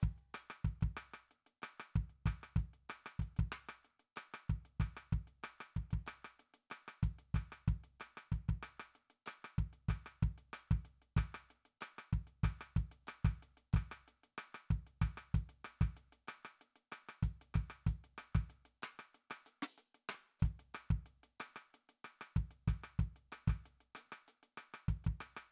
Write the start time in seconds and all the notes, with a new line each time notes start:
0.01 kick, closed hi-hat, hi-hat pedal
0.18 closed hi-hat
0.34 closed hi-hat, cross-stick
0.50 cross-stick
0.65 kick, closed hi-hat
0.81 kick, closed hi-hat
0.97 cross-stick, closed hi-hat
1.14 cross-stick
1.31 closed hi-hat
1.47 closed hi-hat
1.62 cross-stick, closed hi-hat
1.80 cross-stick
1.96 kick, closed hi-hat
2.10 closed hi-hat
2.26 kick, cross-stick, closed hi-hat
2.43 cross-stick
2.56 kick, closed hi-hat
2.74 closed hi-hat
2.89 cross-stick, closed hi-hat
3.06 cross-stick
3.19 kick, closed hi-hat
3.37 kick, closed hi-hat
3.52 cross-stick, closed hi-hat
3.69 cross-stick
3.85 closed hi-hat
4.00 closed hi-hat
4.16 closed hi-hat, cross-stick
4.34 cross-stick
4.50 kick, closed hi-hat
4.65 closed hi-hat
4.80 kick, cross-stick, closed hi-hat
4.97 cross-stick
5.13 kick, closed hi-hat
5.27 closed hi-hat
5.43 cross-stick, closed hi-hat
5.61 cross-stick
5.76 kick, closed hi-hat
5.91 kick, closed hi-hat
6.07 cross-stick, closed hi-hat
6.25 cross-stick
6.39 closed hi-hat
6.54 closed hi-hat
6.70 cross-stick, closed hi-hat
6.88 cross-stick
7.03 kick, closed hi-hat
7.19 closed hi-hat
7.34 kick, cross-stick, closed hi-hat
7.52 cross-stick
7.68 kick, closed hi-hat
7.84 closed hi-hat
8.00 cross-stick, closed hi-hat
8.17 cross-stick
8.32 kick, closed hi-hat
8.49 kick, closed hi-hat
8.63 cross-stick, closed hi-hat
8.80 cross-stick
8.95 closed hi-hat
9.10 closed hi-hat
9.26 closed hi-hat, cross-stick
9.44 cross-stick
9.58 kick, closed hi-hat
9.73 closed hi-hat
9.89 kick, cross-stick, closed hi-hat
10.06 cross-stick
10.23 kick, closed hi-hat
10.38 closed hi-hat
10.53 closed hi-hat, cross-stick
10.71 kick, cross-stick
10.85 closed hi-hat
11.02 closed hi-hat
11.17 kick, cross-stick, closed hi-hat
11.34 cross-stick
11.50 closed hi-hat
11.65 closed hi-hat
11.81 closed hi-hat, cross-stick
11.98 cross-stick
12.13 kick, closed hi-hat
12.27 closed hi-hat
12.43 kick, cross-stick, closed hi-hat
12.61 cross-stick
12.76 kick, closed hi-hat
12.92 closed hi-hat
13.07 cross-stick, closed hi-hat
13.25 kick, cross-stick
13.43 closed hi-hat
13.57 closed hi-hat
13.73 kick, cross-stick, closed hi-hat
13.91 cross-stick
14.08 closed hi-hat
14.24 closed hi-hat
14.38 cross-stick, closed hi-hat
14.55 cross-stick
14.70 kick, closed hi-hat
14.87 closed hi-hat
15.02 kick, cross-stick, closed hi-hat
15.17 cross-stick
15.34 kick, closed hi-hat
15.49 closed hi-hat
15.65 cross-stick, closed hi-hat
15.81 kick, cross-stick
15.97 closed hi-hat
16.13 closed hi-hat
16.28 cross-stick, closed hi-hat
16.45 cross-stick
16.61 closed hi-hat
16.76 closed hi-hat
16.92 cross-stick, closed hi-hat
17.09 cross-stick
17.23 kick, closed hi-hat
17.41 closed hi-hat
17.54 kick, cross-stick, closed hi-hat
17.70 cross-stick
17.87 kick, closed hi-hat
18.04 closed hi-hat
18.18 cross-stick, closed hi-hat
18.35 kick, cross-stick
18.50 closed hi-hat
18.65 closed hi-hat
18.83 cross-stick, closed hi-hat
18.99 cross-stick
19.15 closed hi-hat
19.30 cross-stick, closed hi-hat
19.46 closed hi-hat
19.62 snare
19.78 closed hi-hat
19.95 closed hi-hat
20.09 cross-stick, open hi-hat
20.14 cross-stick
20.39 kick, hi-hat pedal
20.45 closed hi-hat
20.59 closed hi-hat
20.74 cross-stick, closed hi-hat
20.90 kick
21.06 closed hi-hat
21.23 closed hi-hat
21.40 cross-stick, closed hi-hat
21.56 cross-stick
21.74 closed hi-hat
21.89 closed hi-hat
22.05 cross-stick, closed hi-hat
22.21 cross-stick
22.36 kick, closed hi-hat
22.51 closed hi-hat
22.68 kick, cross-stick, closed hi-hat
22.84 cross-stick
22.99 kick, closed hi-hat
23.16 closed hi-hat
23.32 cross-stick, closed hi-hat
23.48 kick, cross-stick
23.66 closed hi-hat
23.81 closed hi-hat
23.95 cross-stick, closed hi-hat
24.12 cross-stick
24.28 closed hi-hat
24.43 closed hi-hat
24.57 cross-stick, closed hi-hat
24.74 cross-stick
24.88 kick, closed hi-hat
25.04 kick, closed hi-hat
25.20 cross-stick, closed hi-hat
25.37 cross-stick